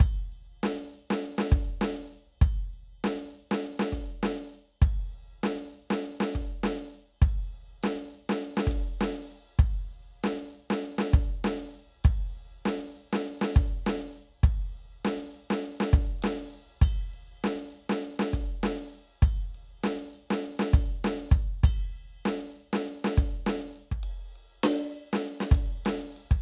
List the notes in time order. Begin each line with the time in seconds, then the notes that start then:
0.01 kick, ride bell
0.32 ride bell
0.64 snare, ride bell
0.94 ride bell
1.11 snare
1.39 snare
1.52 kick, ride bell
1.81 snare, ride bell
2.13 ride
2.42 kick, ride bell
2.74 ride
3.04 snare, ride bell
3.34 ride bell
3.52 snare
3.80 snare
3.93 kick, ride bell
4.23 snare, ride bell
4.55 ride
4.82 kick, ride
5.14 ride
5.44 snare, ride bell
5.74 ride bell
5.91 snare
6.04 ride
6.21 snare
6.34 kick, ride bell
6.64 snare, ride bell
6.93 ride bell
7.22 kick, ride
7.54 ride
7.83 snare, ride bell
8.13 ride bell
8.30 snare
8.57 snare
8.67 kick
8.72 ride
9.01 snare, ride
9.32 ride bell
9.59 kick, ride bell
9.95 ride
10.24 snare, ride bell
10.53 ride
10.71 snare
10.99 snare
11.13 kick, ride bell
11.45 snare, ride
11.76 ride
12.05 kick, ride
12.36 ride
12.66 snare, ride
12.97 ride bell
13.13 snare
13.42 snare
13.55 kick, ride bell
13.87 snare, ride bell
14.16 ride
14.44 kick, ride
14.78 ride
15.05 snare, ride
15.35 ride
15.51 snare
15.80 snare
15.93 kick, snare, ride
16.23 snare, ride
16.54 ride
16.82 kick, ride bell
17.14 ride
17.44 snare, ride
17.73 ride
17.90 snare
18.20 snare
18.34 kick, ride bell
18.64 snare, ride
18.96 ride
19.23 kick, ride bell
19.55 ride
19.84 snare, ride bell
20.14 ride bell
20.31 snare
20.60 snare
20.74 kick, ride bell
21.05 snare, ride bell
21.32 kick, ride bell
21.64 kick, ride bell
21.97 ride bell
22.26 snare, ride
22.56 ride bell
22.73 snare
22.86 ride
23.05 snare
23.17 kick, ride bell
23.47 snare, ride bell
23.76 ride
23.92 kick
24.04 ride
24.36 ride
24.64 snare, ride bell
24.95 ride bell
25.13 snare
25.26 ride
25.41 snare
25.52 kick, ride
25.86 snare, ride
26.17 ride
26.31 kick